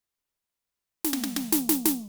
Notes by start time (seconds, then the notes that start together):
1.05 snare, hi-hat pedal
1.13 snare
1.24 snare
1.36 snare
1.52 snare, hi-hat pedal
1.69 snare
1.86 snare